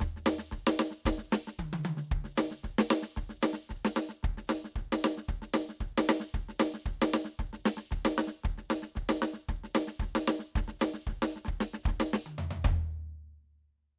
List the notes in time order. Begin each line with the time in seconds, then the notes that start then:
0.01 kick, snare
0.17 snare
0.26 snare, hi-hat pedal
0.39 snare
0.50 kick, snare, hi-hat pedal
0.68 snare
0.79 snare, hi-hat pedal
0.91 snare
1.06 kick, snare
1.19 snare
1.32 snare, hi-hat pedal
1.48 snare
1.59 kick, high tom
1.74 high tom
1.84 hi-hat pedal, high tom
1.98 snare
2.12 kick
2.25 snare
2.36 snare, hi-hat pedal
2.52 snare
2.64 kick, snare
2.79 snare
2.89 snare, hi-hat pedal
3.03 snare
3.17 kick, snare
3.30 snare
3.42 snare, hi-hat pedal
3.54 snare
3.70 kick, snare
3.85 snare
3.95 snare, hi-hat pedal
4.10 snare
4.24 kick, snare
4.38 snare
4.48 snare, hi-hat pedal
4.65 snare
4.76 kick, snare
4.93 snare
5.02 snare, hi-hat pedal
5.18 snare
5.29 kick, snare
5.43 snare
5.54 snare, hi-hat pedal
5.70 snare
5.81 kick, snare
5.98 snare
6.06 snare, hi-hat pedal
6.21 snare
6.35 kick, snare
6.49 snare
6.60 snare, hi-hat pedal
6.75 snare
6.86 kick, snare
7.02 snare
7.12 snare, hi-hat pedal
7.25 snare
7.40 kick, snare
7.54 snare
7.65 snare, hi-hat pedal
7.78 snare
7.92 kick, snare
8.06 snare
8.18 snare, hi-hat pedal
8.28 snare
8.44 kick, snare
8.58 snare
8.70 snare, hi-hat pedal
8.83 snare
8.96 kick, snare
9.10 snare
9.23 snare, hi-hat pedal
9.34 snare
9.49 kick, snare
9.64 snare
9.75 snare, hi-hat pedal
9.88 snare
10.00 kick, snare
10.16 snare
10.28 snare, hi-hat pedal
10.40 snare
10.56 kick, snare
10.69 snare
10.80 snare, hi-hat pedal
10.94 snare
11.07 kick, snare
11.23 snare
11.31 hi-hat pedal
11.37 snare
11.46 kick, snare
11.61 snare
11.74 snare
11.84 kick, hi-hat pedal
11.88 snare
12.01 snare
12.14 snare
12.27 high tom
12.39 floor tom
12.51 floor tom
12.65 kick, floor tom